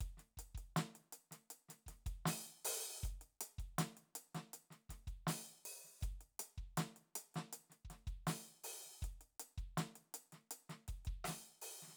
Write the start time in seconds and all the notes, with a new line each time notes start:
0.01 kick, closed hi-hat
0.18 snare, closed hi-hat
0.38 kick, closed hi-hat
0.55 kick, closed hi-hat
0.77 snare, closed hi-hat
0.95 closed hi-hat
1.13 closed hi-hat
1.31 snare, closed hi-hat
1.51 closed hi-hat
1.69 snare, closed hi-hat
1.87 kick, snare, closed hi-hat
2.06 kick, closed hi-hat
2.26 open hi-hat, snare
2.65 open hi-hat
3.04 kick, closed hi-hat, hi-hat pedal
3.22 closed hi-hat
3.41 closed hi-hat
3.59 kick, closed hi-hat
3.79 snare, closed hi-hat
3.97 closed hi-hat
4.16 closed hi-hat
4.35 snare, closed hi-hat
4.54 closed hi-hat
4.71 snare, closed hi-hat
4.90 kick, snare, closed hi-hat
5.08 kick, closed hi-hat
5.27 open hi-hat, snare
5.66 open hi-hat
5.85 snare
6.01 kick, closed hi-hat, hi-hat pedal
6.21 closed hi-hat
6.40 closed hi-hat
6.58 kick, closed hi-hat
6.78 snare, closed hi-hat
6.97 closed hi-hat
7.16 closed hi-hat
7.35 snare, closed hi-hat
7.53 closed hi-hat
7.70 snare, closed hi-hat
7.85 kick
7.90 snare, closed hi-hat
8.07 kick, closed hi-hat
8.27 open hi-hat, snare
8.64 open hi-hat
8.86 snare
9.01 kick, closed hi-hat, hi-hat pedal
9.21 closed hi-hat
9.40 closed hi-hat
9.58 kick, closed hi-hat
9.78 snare, closed hi-hat
9.96 closed hi-hat
10.14 closed hi-hat
10.33 snare, closed hi-hat
10.51 closed hi-hat
10.70 snare, closed hi-hat
10.88 kick, closed hi-hat
11.05 kick, closed hi-hat
11.25 open hi-hat, cross-stick, snare
11.62 open hi-hat
11.83 snare
11.88 snare
11.93 snare